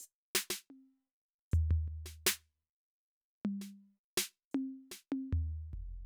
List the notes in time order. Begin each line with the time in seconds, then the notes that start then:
0.00 hi-hat pedal
0.35 snare
0.50 snare
0.70 high tom
1.51 floor tom, hi-hat pedal
1.71 floor tom
1.88 floor tom
2.06 snare
2.26 snare
3.45 mid tom
3.61 snare
4.17 snare
4.51 hi-hat pedal, high tom
4.91 snare
5.12 high tom
5.33 floor tom
5.73 kick